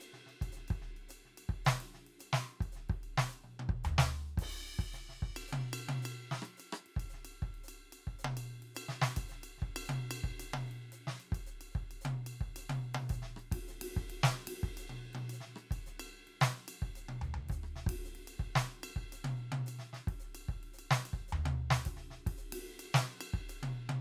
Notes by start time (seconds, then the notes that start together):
0.01 hi-hat pedal, ride bell
0.14 snare
0.26 snare, ride
0.41 kick, ride bell
0.52 hi-hat pedal
0.56 snare
0.68 kick, ride bell
0.82 snare
0.97 ride bell
1.09 hi-hat pedal, ride bell
1.25 snare
1.38 ride bell
1.49 kick
1.65 snare, hi-hat pedal
1.80 ride
1.94 snare
2.07 ride
2.20 hi-hat pedal, ride bell
2.33 snare
2.48 ride bell
2.61 kick, ride bell
2.72 snare, hi-hat pedal
2.89 kick, ride
3.03 ride bell
3.18 snare
3.29 hi-hat pedal
3.33 ride bell
3.44 high tom
3.52 hi-hat pedal
3.59 high tom
3.69 kick
3.84 floor tom, hi-hat pedal
3.98 snare
4.38 kick, hi-hat pedal, ride, crash
4.68 ride
4.79 kick, ride bell
4.94 snare, hi-hat pedal
5.09 snare
5.19 kick, hi-hat pedal
5.36 ride bell
5.48 hi-hat pedal
5.53 high tom
5.73 ride bell
5.89 high tom
6.02 hi-hat pedal, ride bell
6.31 snare, ride bell
6.42 cross-stick, ride
6.57 hi-hat pedal, ride bell
6.73 cross-stick
6.86 ride
6.97 kick, ride bell
7.10 snare, hi-hat pedal
7.25 ride bell
7.42 kick
7.54 ride
7.64 hi-hat pedal
7.69 ride bell
7.93 ride bell
8.07 kick
8.19 hi-hat pedal
8.25 high tom
8.37 ride bell
8.62 ride
8.75 hi-hat pedal, ride bell
8.89 snare
9.02 snare
9.17 kick, ride bell
9.29 snare, hi-hat pedal
9.44 ride bell
9.58 snare
9.62 kick
9.76 ride bell
9.85 hi-hat pedal
9.89 high tom
10.11 ride bell
10.24 kick
10.40 hi-hat pedal, ride bell
10.54 high tom
10.66 hi-hat pedal
10.71 ride
10.92 hi-hat pedal, ride
11.07 snare
11.16 hi-hat pedal, ride bell
11.32 kick, ride bell
11.47 hi-hat pedal
11.61 ride bell
11.72 kick, hi-hat pedal
11.91 ride bell
12.01 hi-hat pedal
12.05 high tom
12.27 ride bell
12.41 kick
12.56 hi-hat pedal, ride bell
12.70 high tom
12.83 hi-hat pedal
12.94 high tom, ride
13.10 kick, hi-hat pedal, ride bell
13.22 snare
13.36 cross-stick, ride
13.52 kick, ride
13.68 snare, hi-hat pedal
13.81 ride
13.93 kick, hi-hat pedal
14.10 ride
14.24 snare, hi-hat pedal
14.47 hi-hat pedal, ride
14.63 kick
14.77 hi-hat pedal, ride bell
14.90 high tom
15.04 hi-hat pedal
15.13 high tom, ride
15.30 hi-hat pedal, ride bell
15.41 snare
15.56 cross-stick, ride
15.71 kick, ride bell
15.86 snare, hi-hat pedal
16.00 ride bell
16.10 hi-hat pedal
16.27 ride
16.41 snare, hi-hat pedal
16.68 ride bell
16.82 kick
16.96 hi-hat pedal, ride bell
17.09 high tom
17.22 floor tom, hi-hat pedal
17.34 floor tom
17.49 kick, hi-hat pedal, ride
17.64 cross-stick
17.76 snare, hi-hat pedal
17.87 kick, ride
18.05 hi-hat pedal
18.15 ride
18.28 ride bell
18.40 kick
18.56 snare, hi-hat pedal
18.82 hi-hat pedal, ride bell
18.96 kick
19.12 hi-hat pedal, ride bell
19.24 high tom
19.37 hi-hat pedal
19.52 high tom
19.66 hi-hat pedal, ride bell
19.79 snare
19.93 snare, ride
20.07 kick, ride
20.20 hi-hat pedal
20.24 snare
20.35 ride bell
20.44 hi-hat pedal
20.49 kick
20.63 ride
20.74 hi-hat pedal
20.79 ride bell
20.91 snare
21.05 ride bell
21.13 kick
21.28 hi-hat pedal
21.33 floor tom
21.46 high tom
21.71 snare
21.85 kick, hi-hat pedal, ride
21.96 snare
22.11 snare
22.27 kick, ride
22.38 snare, hi-hat pedal
22.53 ride
22.79 ride bell
22.93 snare, hi-hat pedal
23.21 ride bell
23.34 kick
23.49 hi-hat pedal, ride bell
23.63 high tom
23.74 hi-hat pedal
23.89 high tom